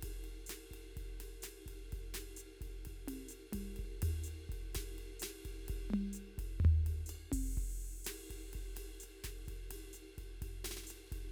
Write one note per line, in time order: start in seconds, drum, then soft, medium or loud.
0.01 kick soft
0.01 snare soft
0.01 ride medium
0.08 kick soft
0.24 ride soft
0.39 snare soft
0.46 snare soft
0.46 hi-hat pedal medium
0.46 ride medium
0.71 kick soft
0.71 ride soft
0.97 kick soft
0.97 ride soft
1.02 kick soft
1.20 snare soft
1.20 ride medium
1.42 snare soft
1.42 hi-hat pedal medium
1.42 ride medium
1.66 kick soft
1.66 ride soft
1.71 kick soft
1.92 kick soft
1.92 ride soft
1.98 kick soft
2.13 snare soft
2.13 ride medium
2.36 hi-hat pedal medium
2.36 ride soft
2.59 kick soft
2.59 mid tom soft
2.59 ride soft
2.66 kick soft
2.85 kick soft
2.85 ride soft
2.92 kick soft
3.08 high tom medium
3.08 ride medium
3.28 hi-hat pedal medium
3.28 ride soft
3.53 kick soft
3.53 mid tom medium
3.53 ride medium
3.60 kick soft
3.76 kick soft
3.76 ride soft
3.84 kick soft
4.02 floor tom medium
4.02 ride medium
4.24 hi-hat pedal medium
4.28 ride soft
4.49 kick soft
4.49 ride soft
4.55 kick soft
4.72 kick soft
4.72 snare medium
4.72 hi-hat pedal soft
4.72 ride medium
4.81 kick soft
4.98 ride soft
5.19 snare medium
5.19 hi-hat pedal medium
5.19 ride medium
5.45 kick soft
5.45 ride soft
5.51 kick soft
5.66 kick soft
5.66 hi-hat pedal soft
5.66 ride medium
5.75 kick soft
5.90 mid tom medium
5.94 mid tom loud
6.13 hi-hat pedal medium
6.13 ride soft
6.38 kick soft
6.38 ride medium
6.44 kick soft
6.60 floor tom loud
6.64 kick soft
6.64 floor tom loud
6.86 ride soft
7.06 hi-hat pedal medium
7.06 ride bell soft
7.32 kick soft
7.32 high tom loud
7.32 crash loud
7.39 kick soft
7.57 kick soft
7.57 ride soft
7.63 kick soft
7.74 snare soft
7.84 ride soft
8.04 snare soft
8.04 hi-hat pedal medium
8.04 ride medium
8.30 kick soft
8.30 ride soft
8.35 kick soft
8.53 kick soft
8.53 ride soft
8.60 kick soft
8.76 snare soft
8.76 ride medium
9.00 hi-hat pedal medium
9.00 ride soft
9.23 kick soft
9.23 snare soft
9.23 ride medium
9.30 kick soft
9.39 snare soft
9.45 kick soft
9.45 hi-hat pedal soft
9.45 ride soft
9.53 kick soft
9.71 snare soft
9.71 ride medium
9.93 hi-hat pedal medium
9.93 ride soft
10.18 kick soft
10.18 ride soft
10.23 kick soft
10.42 kick soft
10.42 ride soft
10.48 kick soft
10.64 snare medium
10.64 ride medium
10.71 snare medium
10.77 snare soft
10.83 snare soft
10.83 hi-hat pedal medium
10.90 snare soft
10.90 ride soft
10.96 snare soft
11.00 snare soft
11.06 snare soft
11.11 kick soft
11.11 snare soft
11.11 ride soft
11.14 kick soft
11.14 snare soft